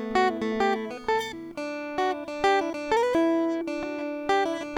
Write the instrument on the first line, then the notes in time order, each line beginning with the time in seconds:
acoustic guitar
0.00 A3
0.17 F#4
0.30 E4
0.44 A3
0.62 G4
0.75 E4
0.93 B3
1.11 A4
1.34 E4
1.59 D4
2.00 F#4
2.13 E4
2.30 D4
2.46 G4
2.61 E4
2.76 D4
2.94 A#4
3.17 E4
3.69 D4
3.85 F#4
4.01 E4
4.31 G4
4.46 E4
4.63 D4